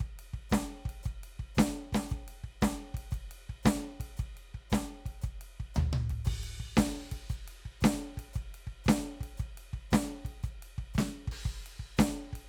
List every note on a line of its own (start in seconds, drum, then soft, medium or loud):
0.01 kick medium
0.20 ride medium
0.34 kick soft
0.50 kick medium
0.50 snare loud
0.50 hi-hat pedal medium
0.54 ride medium
0.86 kick soft
0.90 ride medium
1.04 kick medium
1.04 hi-hat pedal medium
1.24 ride medium
1.40 kick soft
1.55 kick medium
1.55 snare loud
1.55 hi-hat pedal medium
1.60 ride medium
1.93 kick soft
1.93 snare medium
1.93 ride medium
2.09 kick medium
2.09 hi-hat pedal medium
2.29 ride medium
2.44 kick soft
2.62 kick medium
2.62 snare loud
2.62 hi-hat pedal medium
2.62 ride medium
2.95 kick soft
2.95 ride medium
3.11 kick medium
3.11 hi-hat pedal medium
3.11 ride soft
3.32 ride medium
3.50 kick soft
3.63 kick medium
3.63 snare loud
3.63 hi-hat pedal medium
3.63 ride medium
4.01 kick soft
4.01 ride medium
4.17 kick medium
4.17 hi-hat pedal medium
4.37 ride soft
4.55 kick soft
4.71 kick medium
4.71 snare loud
4.71 hi-hat pedal medium
4.71 ride medium
5.06 kick soft
5.06 ride medium
5.22 kick medium
5.22 hi-hat pedal medium
5.42 ride medium
5.60 kick soft
5.75 kick medium
5.75 floor tom loud
5.75 hi-hat pedal medium
5.93 hi-hat pedal soft
5.93 high tom loud
6.10 kick soft
6.10 ride medium
6.25 kick medium
6.25 hi-hat pedal medium
6.25 crash medium
6.44 ride medium
6.60 kick soft
6.77 kick medium
6.77 snare loud
6.77 hi-hat pedal medium
6.77 crash medium
7.12 kick soft
7.12 ride medium
7.30 kick medium
7.30 hi-hat pedal medium
7.48 ride medium
7.66 kick soft
7.81 kick medium
7.81 snare loud
7.81 hi-hat pedal medium
7.81 ride medium
8.18 kick soft
8.18 ride medium
8.34 kick medium
8.34 hi-hat pedal medium
8.55 ride medium
8.67 kick soft
8.85 kick medium
8.85 hi-hat pedal medium
8.89 snare loud
8.89 ride medium
9.21 kick soft
9.21 ride medium
9.38 kick medium
9.38 hi-hat pedal medium
9.58 ride medium
9.74 kick soft
9.91 kick medium
9.91 snare loud
9.91 hi-hat pedal medium
9.91 ride medium
10.25 kick soft
10.25 ride medium
10.43 kick medium
10.43 hi-hat pedal medium
10.63 ride medium
10.79 kick soft
10.94 kick medium
10.94 hi-hat pedal medium
10.99 snare loud
10.99 ride medium
11.28 kick medium
11.28 crash medium
11.46 kick medium
11.46 hi-hat pedal soft
11.67 ride medium
11.80 kick soft
11.97 kick medium
11.97 snare loud
11.97 hi-hat pedal medium
11.97 ride medium
12.33 kick soft
12.33 ride medium